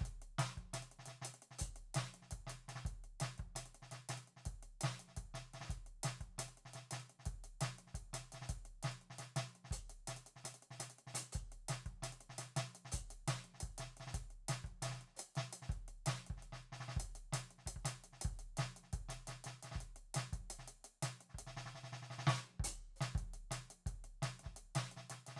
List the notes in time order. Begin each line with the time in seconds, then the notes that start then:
0.01 kick
0.05 closed hi-hat
0.22 closed hi-hat
0.39 snare, closed hi-hat
0.57 kick, closed hi-hat
0.73 snare, closed hi-hat
0.82 closed hi-hat
0.92 closed hi-hat
0.99 snare
1.06 snare, closed hi-hat
1.22 snare, closed hi-hat
1.34 closed hi-hat
1.42 closed hi-hat
1.51 snare
1.59 closed hi-hat, kick
1.76 closed hi-hat
1.94 snare, closed hi-hat
2.14 closed hi-hat
2.22 snare
2.31 kick, closed hi-hat
2.47 snare, closed hi-hat
2.68 snare, closed hi-hat
2.76 snare
2.85 kick, closed hi-hat
3.04 closed hi-hat
3.20 snare, closed hi-hat
3.38 kick, closed hi-hat
3.55 snare, closed hi-hat
3.66 closed hi-hat
3.75 closed hi-hat
3.82 snare
3.91 snare, closed hi-hat
4.09 snare, closed hi-hat
4.18 closed hi-hat
4.28 closed hi-hat
4.36 snare
4.45 kick, closed hi-hat
4.63 closed hi-hat
4.81 snare, closed hi-hat
4.99 closed hi-hat
5.08 snare
5.17 kick, closed hi-hat
5.34 snare, closed hi-hat
5.54 snare, closed hi-hat
5.61 snare
5.64 snare
5.70 kick, closed hi-hat
5.86 closed hi-hat
6.03 snare, closed hi-hat
6.21 kick, closed hi-hat
6.38 snare, closed hi-hat
6.48 closed hi-hat
6.57 closed hi-hat
6.65 snare
6.74 snare, closed hi-hat
6.91 snare, closed hi-hat
7.00 closed hi-hat
7.10 closed hi-hat
7.19 snare
7.26 kick, closed hi-hat
7.44 closed hi-hat
7.61 snare, closed hi-hat
7.79 closed hi-hat
7.87 snare
7.94 kick, closed hi-hat
8.13 snare, closed hi-hat
8.32 snare, closed hi-hat
8.42 snare
8.49 kick, closed hi-hat
8.65 closed hi-hat
8.83 snare, closed hi-hat
8.92 closed hi-hat
9.01 closed hi-hat
9.10 snare
9.19 snare, closed hi-hat
9.36 snare, closed hi-hat
9.55 closed hi-hat
9.64 snare
9.71 closed hi-hat, kick
9.90 closed hi-hat
10.07 snare, closed hi-hat
10.16 closed hi-hat
10.26 closed hi-hat
10.36 snare
10.44 snare, closed hi-hat
10.54 closed hi-hat
10.62 closed hi-hat
10.71 snare
10.80 snare, closed hi-hat
10.90 closed hi-hat
10.99 closed hi-hat
11.07 snare
11.14 closed hi-hat, snare
11.32 closed hi-hat, kick
11.52 closed hi-hat
11.69 snare, closed hi-hat
11.86 kick, closed hi-hat
12.02 snare, closed hi-hat
12.12 closed hi-hat
12.21 closed hi-hat
12.29 snare
12.38 snare, closed hi-hat
12.56 snare, closed hi-hat
12.75 closed hi-hat
12.85 snare
12.92 closed hi-hat, kick
13.11 closed hi-hat
13.28 snare, closed hi-hat
13.44 closed hi-hat
13.54 snare
13.60 kick, closed hi-hat
13.78 snare, closed hi-hat
13.97 snare, closed hi-hat
14.07 snare
14.11 kick, snare, closed hi-hat
14.31 closed hi-hat
14.48 snare, closed hi-hat
14.64 kick, closed hi-hat
14.82 snare, closed hi-hat
14.85 snare
14.91 snare
14.96 snare
15.01 open hi-hat
15.07 snare
15.15 snare, hi-hat pedal
15.19 closed hi-hat
15.35 snare, closed hi-hat
15.53 closed hi-hat
15.62 snare
15.69 kick, closed hi-hat
15.88 closed hi-hat
16.06 snare, closed hi-hat
16.27 kick, closed hi-hat
16.37 snare
16.42 closed hi-hat
16.52 snare
16.72 snare
16.80 snare
16.88 snare
16.97 kick, closed hi-hat
17.15 closed hi-hat
17.33 snare, closed hi-hat
17.51 closed hi-hat
17.58 snare
17.66 kick, closed hi-hat
17.76 kick
17.85 snare, closed hi-hat
18.04 closed hi-hat
18.13 snare
18.21 kick, closed hi-hat
18.39 closed hi-hat
18.57 snare, closed hi-hat
18.76 closed hi-hat
18.83 snare
18.93 kick, closed hi-hat
19.09 snare, closed hi-hat
19.27 snare, closed hi-hat
19.44 snare, closed hi-hat
19.63 snare, closed hi-hat
19.71 kick, snare
19.80 closed hi-hat
19.96 closed hi-hat
20.14 snare, closed hi-hat
20.33 kick, closed hi-hat
20.50 closed hi-hat
20.59 snare
20.68 closed hi-hat
20.84 closed hi-hat
21.03 snare, closed hi-hat
21.21 closed hi-hat
21.29 snare
21.34 kick
21.39 closed hi-hat
21.47 snare
21.57 snare
21.66 snare
21.75 snare
21.84 snare
21.92 snare
22.02 snare
22.10 snare
22.18 snare
22.27 snare
22.60 kick
22.64 open hi-hat
22.96 hi-hat pedal
23.01 snare, closed hi-hat
23.15 kick, closed hi-hat
23.34 closed hi-hat
23.51 snare, closed hi-hat
23.70 closed hi-hat
23.86 kick, closed hi-hat
24.04 closed hi-hat
24.22 snare, closed hi-hat
24.39 snare, closed hi-hat
24.46 kick
24.56 closed hi-hat
24.75 snare, closed hi-hat
24.92 closed hi-hat
24.97 snare
25.10 snare, closed hi-hat
25.27 snare, closed hi-hat
25.37 snare